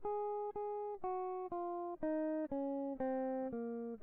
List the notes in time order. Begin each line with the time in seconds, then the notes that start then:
0.05 G#4
0.56 G#4
1.04 F#4
1.52 F4
2.03 D#4
2.52 C#4
3.01 C4
3.53 A#3